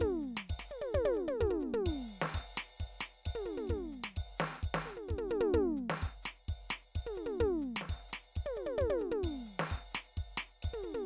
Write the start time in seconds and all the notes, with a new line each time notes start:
0.01 kick, mid tom
0.22 hi-hat pedal
0.37 snare
0.50 kick, ride
0.60 snare
0.68 hi-hat pedal, high tom
0.81 high tom
0.94 kick, high tom
1.05 high tom
1.14 hi-hat pedal, high tom
1.28 high tom
1.40 kick, mid tom
1.48 kick, mid tom
1.60 hi-hat pedal, mid tom
1.74 mid tom
1.86 kick, ride
2.08 hi-hat pedal
2.22 snare
2.35 kick, ride bell
2.54 snare, hi-hat pedal
2.80 kick, ride bell
3.00 snare, hi-hat pedal
3.26 kick, ride
3.35 mid tom
3.45 hi-hat pedal, mid tom
3.57 mid tom
3.68 kick, mid tom, ride
3.75 kick
3.92 hi-hat pedal
4.04 snare
4.17 kick, ride bell
4.37 snare, hi-hat pedal
4.63 kick, ride bell
4.75 snare
4.82 hi-hat pedal, mid tom
4.97 mid tom
5.08 kick, mid tom
5.17 kick, mid tom
5.29 hi-hat pedal, mid tom
5.41 mid tom
5.54 kick, mid tom
5.77 hi-hat pedal
5.90 snare
6.02 kick, ride bell
6.23 snare, hi-hat pedal
6.49 kick, ride bell
6.69 snare, hi-hat pedal
6.95 kick, ride
7.06 mid tom
7.15 hi-hat pedal, mid tom
7.26 mid tom
7.40 kick, mid tom
7.47 kick
7.62 hi-hat pedal
7.77 snare
7.81 snare
7.90 kick, ride
8.09 hi-hat pedal
8.13 snare
8.36 kick, ride
8.46 high tom
8.55 hi-hat pedal, high tom
8.66 high tom
8.78 kick, high tom
8.87 kick, high tom
8.98 hi-hat pedal, mid tom
9.11 mid tom
9.24 kick, ride bell
9.46 hi-hat pedal
9.60 snare
9.71 kick, ride bell
9.91 snare, hi-hat pedal
10.17 kick, ride bell
10.37 snare, hi-hat pedal
10.63 kick, ride
10.70 kick, mid tom
10.82 hi-hat pedal
10.94 mid tom